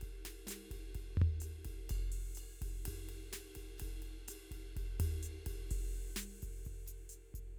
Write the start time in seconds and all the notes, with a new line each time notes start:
0.01 kick, hi-hat pedal, ride
0.08 kick
0.25 snare, ride
0.47 snare, hi-hat pedal, mid tom, ride
0.51 snare
0.71 kick, ride
0.76 kick
0.95 kick, ride
1.17 floor tom
1.22 floor tom
1.40 hi-hat pedal, ride
1.65 kick, ride
1.71 kick
1.90 kick, ride bell
1.97 kick
2.12 crash
2.35 hi-hat pedal, ride bell
2.62 kick, ride
2.67 kick
2.85 kick, snare, hi-hat pedal, ride
2.94 kick
3.09 ride
3.32 snare, hi-hat pedal, ride
3.55 kick, ride
3.78 kick, snare, ride
3.87 kick
4.02 ride
4.28 snare, hi-hat pedal, ride
4.51 kick, ride
4.57 kick
4.77 kick, ride
4.83 kick
5.00 floor tom, ride
5.23 hi-hat pedal
5.46 kick, ride
5.52 kick
5.68 kick, hi-hat pedal, crash
5.86 crash
6.16 open hi-hat, snare, hi-hat pedal, mid tom
6.42 closed hi-hat, kick
6.49 kick
6.65 closed hi-hat, kick
6.72 kick
6.86 closed hi-hat, snare
7.09 closed hi-hat, hi-hat pedal
7.34 closed hi-hat, kick
7.40 kick